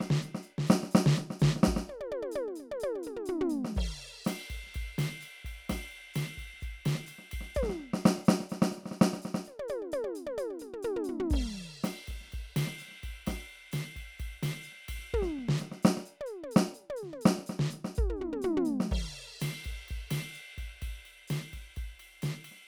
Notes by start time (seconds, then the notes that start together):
0.01 snare
0.11 snare
0.22 snare, hi-hat pedal
0.35 snare
0.43 hi-hat pedal
0.58 snare
0.67 snare, hi-hat pedal
0.84 snare
0.91 snare, hi-hat pedal
1.06 snare
1.15 snare, hi-hat pedal
1.31 snare
1.40 kick, snare, hi-hat pedal
1.56 snare
1.63 kick, snare, hi-hat pedal
1.73 kick, snare
1.85 hi-hat pedal
1.89 high tom
2.01 high tom
2.12 high tom
2.23 high tom
2.32 hi-hat pedal, high tom
2.48 high tom
2.56 hi-hat pedal, high tom
2.71 high tom
2.80 hi-hat pedal, high tom
2.95 high tom
3.03 hi-hat pedal, mid tom
3.16 mid tom
3.26 floor tom, hi-hat pedal
3.41 floor tom
3.50 kick, hi-hat pedal
3.65 snare
3.75 kick, hi-hat pedal, crash
4.25 snare, hi-hat pedal, ride
4.50 kick, ride
4.56 kick
4.64 snare
4.67 snare
4.74 kick, hi-hat pedal, ride
4.81 kick
4.99 snare, ride
5.21 hi-hat pedal, ride
5.45 kick, ride
5.70 kick, snare, hi-hat pedal, ride
5.76 kick
5.91 ride
6.14 snare, hi-hat pedal, ride
6.38 kick, ride
6.54 snare
6.61 kick, hi-hat pedal, ride
6.86 snare, ride
6.95 snare
7.07 hi-hat pedal, ride
7.19 snare
7.32 kick, ride
7.41 snare
7.55 kick, hi-hat pedal, high tom
7.63 snare
7.70 snare
7.94 snare
7.99 hi-hat pedal
8.06 snare
8.18 snare
8.25 snare, hi-hat pedal
8.41 snare
8.50 snare, hi-hat pedal
8.62 snare
8.72 snare, hi-hat pedal
8.78 snare
8.83 snare
8.86 snare
8.92 snare
8.97 hi-hat pedal
9.02 snare
9.14 snare
9.22 snare, hi-hat pedal
9.35 snare
9.45 hi-hat pedal, high tom
9.59 high tom
9.69 hi-hat pedal, high tom
9.82 high tom
9.92 hi-hat pedal, high tom
10.04 high tom
10.16 hi-hat pedal
10.27 high tom
10.38 hi-hat pedal, high tom
10.50 high tom
10.60 hi-hat pedal, mid tom
10.73 mid tom
10.83 hi-hat pedal, mid tom
10.96 mid tom
11.05 hi-hat pedal
11.09 floor tom
11.20 floor tom
11.30 kick, hi-hat pedal, crash
11.84 snare, hi-hat pedal, ride
12.08 kick, snare, ride
12.14 kick
12.18 snare
12.21 snare
12.24 snare
12.28 snare, hi-hat pedal
12.32 kick, ride
12.39 kick
12.57 snare, ride
12.68 snare
12.79 snare, hi-hat pedal, ride
12.89 snare
12.92 snare
13.04 kick, ride
13.09 kick
13.27 kick, snare, hi-hat pedal, ride
13.33 kick
13.50 ride
13.72 snare, hi-hat pedal, ride
13.96 kick, ride
14.18 kick, hi-hat pedal, ride
14.43 snare, ride
14.54 snare
14.63 hi-hat pedal
14.73 snare
14.89 kick, ride
14.94 kick
14.99 snare
15.14 kick, mid tom
15.20 kick, snare
15.39 snare
15.49 snare
15.58 snare, hi-hat pedal
15.72 snare
15.83 snare, hi-hat pedal
15.97 snare
16.06 hi-hat pedal
16.21 high tom
16.27 hi-hat pedal
16.44 high tom
16.52 hi-hat pedal
16.57 snare
16.68 high tom
16.75 hi-hat pedal
16.90 high tom
16.97 hi-hat pedal
17.03 snare
17.13 high tom
17.21 hi-hat pedal
17.26 snare
17.39 snare
17.47 snare, hi-hat pedal
17.60 snare
17.71 snare, hi-hat pedal
17.85 snare
17.95 kick, hi-hat pedal, mid tom
18.10 mid tom
18.17 kick, hi-hat pedal
18.21 floor tom
18.33 mid tom
18.42 hi-hat pedal, floor tom
18.57 floor tom
18.65 hi-hat pedal
18.81 snare
18.89 kick, hi-hat pedal, crash
18.98 kick
19.04 snare
19.40 snare, hi-hat pedal, ride
19.65 kick, ride
19.69 kick, snare
19.74 snare
19.88 kick, hi-hat pedal, ride
19.96 kick
20.11 snare, ride
20.34 hi-hat pedal, ride
20.58 kick, ride
20.63 kick
20.82 kick, hi-hat pedal, ride
20.88 kick
21.06 ride
21.28 snare, hi-hat pedal, ride
21.53 kick, snare, ride
21.74 kick, hi-hat pedal, ride
22.00 ride
22.22 snare, hi-hat pedal, ride
22.45 ride
22.52 snare